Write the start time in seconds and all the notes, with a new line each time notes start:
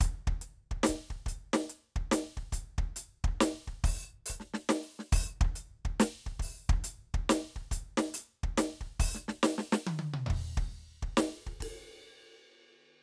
0.01 closed hi-hat, kick
0.28 kick
0.42 closed hi-hat
0.71 kick
0.84 closed hi-hat, snare
0.89 kick
1.11 kick
1.26 closed hi-hat, kick
1.54 snare
1.70 closed hi-hat
1.96 kick
2.12 closed hi-hat, snare
2.37 kick
2.53 closed hi-hat, kick
2.78 kick
2.96 closed hi-hat
3.24 kick
3.41 closed hi-hat, snare
3.68 kick
3.84 open hi-hat, kick
4.26 open hi-hat, kick, hi-hat pedal
4.40 snare
4.54 snare
4.69 snare
4.83 open hi-hat
4.99 snare
5.13 open hi-hat, kick
5.41 kick
5.56 closed hi-hat
5.85 kick
6.00 closed hi-hat, snare
6.27 kick
6.40 open hi-hat, kick
6.70 kick
6.84 closed hi-hat
7.14 kick
7.30 closed hi-hat, snare
7.56 kick
7.72 closed hi-hat, kick
7.98 snare
8.14 closed hi-hat
8.44 kick
8.58 open hi-hat, snare
8.81 kick
9.00 open hi-hat, kick
9.15 snare, hi-hat pedal
9.29 snare
9.43 snare, hi-hat pedal
9.59 snare
9.73 snare
9.87 high tom
9.99 high tom
10.13 kick, mid tom
10.27 kick, floor tom
10.33 crash
10.58 kick
11.03 kick
11.18 snare, ride
11.47 kick
11.61 kick, ride
12.48 ride